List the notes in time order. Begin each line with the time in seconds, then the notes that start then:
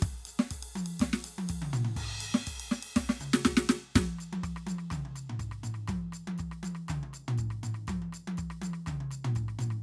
0.01 kick, ride, percussion
0.26 ride, percussion
0.39 snare
0.51 kick, ride, percussion
0.63 ride
0.76 high tom, percussion
0.86 ride
1.00 kick, snare, ride, percussion
1.13 snare
1.24 ride, percussion
1.39 high tom
1.49 kick, ride, percussion
1.62 mid tom
1.73 floor tom, percussion
1.85 floor tom
1.97 kick, percussion, ride
2.21 ride, percussion
2.35 snare
2.47 kick, ride, percussion
2.60 ride
2.72 snare, percussion
2.83 ride
2.96 kick, snare, ride, percussion
3.10 snare
3.20 kick, mid tom, percussion
3.34 snare
3.44 kick, snare, percussion
3.57 snare
3.67 kick, snare, percussion
3.95 kick, snare, high tom, percussion
4.19 cross-stick, percussion
4.33 high tom
4.44 kick, cross-stick, percussion
4.56 cross-stick
4.67 high tom, percussion
4.79 cross-stick
4.91 kick, cross-stick, mid tom, percussion
5.05 mid tom
5.16 cross-stick, percussion
5.30 floor tom
5.40 kick, cross-stick, percussion
5.52 cross-stick
5.64 floor tom, percussion
5.74 cross-stick
5.88 kick, cross-stick, high tom, percussion
6.13 cross-stick, percussion
6.28 high tom
6.38 kick, cross-stick, percussion
6.52 cross-stick
6.63 high tom, percussion
6.75 cross-stick
6.89 kick, cross-stick, mid tom, percussion
7.03 mid tom
7.14 cross-stick, percussion
7.28 floor tom
7.38 kick, cross-stick, percussion
7.51 cross-stick
7.64 floor tom, percussion
7.75 cross-stick
7.88 kick, cross-stick, high tom, percussion
8.02 high tom
8.06 high tom
8.13 cross-stick, percussion
8.28 high tom
8.38 kick, cross-stick, percussion
8.51 cross-stick
8.62 high tom, percussion
8.74 cross-stick
8.87 kick, cross-stick, mid tom, percussion
9.01 mid tom
9.11 cross-stick, percussion
9.25 floor tom
9.36 kick, cross-stick, percussion
9.49 cross-stick
9.59 floor tom, percussion
9.71 cross-stick